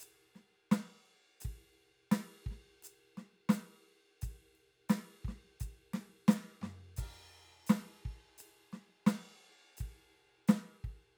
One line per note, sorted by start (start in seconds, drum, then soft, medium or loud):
0.01 hi-hat pedal medium
0.01 ride soft
0.36 snare soft
0.36 ride soft
0.72 snare loud
0.72 hi-hat pedal medium
0.72 ride soft
1.07 ride soft
1.41 hi-hat pedal medium
1.41 ride medium
1.46 kick soft
1.74 ride soft
2.12 snare loud
2.12 hi-hat pedal medium
2.12 ride medium
2.47 kick soft
2.47 ride soft
2.52 snare soft
2.83 hi-hat pedal medium
2.83 ride soft
3.18 snare soft
3.18 ride soft
3.50 snare loud
3.50 hi-hat pedal medium
3.50 ride medium
4.22 kick soft
4.22 hi-hat pedal medium
4.22 ride soft
4.56 ride soft
4.90 snare loud
4.90 hi-hat pedal medium
4.90 ride medium
5.25 kick soft
5.25 snare soft
5.25 ride soft
5.61 kick soft
5.61 hi-hat pedal medium
5.61 ride soft
5.94 snare medium
5.94 ride soft
6.29 snare loud
6.29 hi-hat pedal medium
6.29 ride medium
6.62 snare medium
6.62 floor tom soft
6.97 kick soft
6.97 hi-hat pedal medium
6.97 crash soft
7.67 snare loud
7.67 hi-hat pedal medium
7.67 ride medium
8.06 kick soft
8.06 ride soft
8.39 hi-hat pedal medium
8.39 ride medium
8.73 snare soft
8.73 ride soft
9.07 snare loud
9.07 hi-hat pedal medium
9.07 ride soft
9.78 kick soft
9.78 hi-hat pedal medium
9.78 ride soft
10.49 snare loud
10.49 hi-hat pedal medium
10.49 ride soft
10.85 kick soft
10.85 ride soft